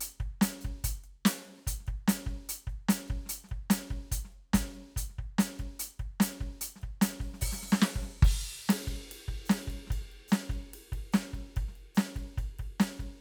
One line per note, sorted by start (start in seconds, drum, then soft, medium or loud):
0.01 closed hi-hat loud
0.20 kick medium
0.20 closed hi-hat soft
0.42 closed hi-hat loud
0.42 snare loud
0.61 closed hi-hat soft
0.61 kick medium
0.84 closed hi-hat loud
0.84 kick medium
1.04 closed hi-hat soft
1.26 closed hi-hat loud
1.26 snare loud
1.46 closed hi-hat soft
1.58 snare soft
1.67 closed hi-hat loud
1.67 kick medium
1.80 snare soft
1.87 kick medium
1.87 closed hi-hat soft
2.08 closed hi-hat loud
2.08 snare loud
2.27 kick medium
2.27 closed hi-hat soft
2.49 closed hi-hat loud
2.67 kick soft
2.67 closed hi-hat soft
2.89 closed hi-hat loud
2.89 snare loud
3.08 kick medium
3.08 closed hi-hat soft
3.26 closed hi-hat loud
3.26 snare soft
3.44 snare soft
3.49 kick soft
3.49 closed hi-hat soft
3.70 closed hi-hat loud
3.70 snare loud
3.91 kick medium
3.91 closed hi-hat soft
4.12 closed hi-hat loud
4.12 kick medium
4.25 snare soft
4.32 closed hi-hat soft
4.54 closed hi-hat loud
4.54 kick medium
4.54 snare loud
4.74 closed hi-hat soft
4.97 closed hi-hat loud
4.97 kick medium
5.10 snare soft
5.19 kick soft
5.19 closed hi-hat soft
5.39 closed hi-hat loud
5.39 snare loud
5.59 kick soft
5.59 closed hi-hat soft
5.80 closed hi-hat loud
6.00 kick soft
6.00 closed hi-hat soft
6.20 closed hi-hat loud
6.20 snare loud
6.41 kick medium
6.41 closed hi-hat soft
6.60 closed hi-hat loud
6.60 snare soft
6.76 snare soft
6.82 kick soft
6.82 closed hi-hat soft
7.02 closed hi-hat loud
7.02 snare loud
7.20 kick soft
7.20 open hi-hat soft
7.34 snare soft
7.41 open hi-hat loud
7.41 kick medium
7.53 snare medium
7.63 snare soft
7.72 snare loud
7.82 snare loud
7.96 kick medium
8.03 snare soft
8.23 kick loud
8.23 crash loud
8.69 snare loud
8.69 hi-hat pedal medium
8.69 ride loud
8.87 kick medium
8.87 ride soft
9.12 ride medium
9.28 kick medium
9.46 snare loud
9.46 hi-hat pedal medium
9.52 ride loud
9.68 kick soft
9.68 ride soft
9.87 kick medium
9.87 snare soft
9.92 ride bell medium
10.01 snare soft
10.05 snare soft
10.12 ride soft
10.28 snare loud
10.28 hi-hat pedal medium
10.34 ride bell medium
10.50 kick medium
10.50 ride soft
10.74 ride medium
10.92 kick medium
10.92 snare soft
10.92 ride soft
11.13 snare loud
11.13 hi-hat pedal medium
11.13 ride bell soft
11.34 kick soft
11.34 ride soft
11.57 kick medium
11.57 ride bell soft
11.68 snare soft
11.76 ride soft
11.95 snare loud
11.95 hi-hat pedal medium
11.95 ride bell medium
12.16 kick soft
12.16 ride soft
12.38 kick medium
12.38 ride bell soft
12.59 kick soft
12.59 ride soft
12.80 snare loud
12.80 hi-hat pedal medium
12.80 ride bell medium
13.00 kick soft
13.00 ride soft